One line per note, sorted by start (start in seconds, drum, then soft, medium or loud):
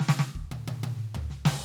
0.00 snare loud
0.09 snare loud
0.19 snare loud
0.35 kick medium
0.51 high tom loud
0.68 high tom loud
0.83 high tom loud
0.97 snare soft
1.15 floor tom loud
1.30 snare soft
1.45 snare loud
1.45 crash loud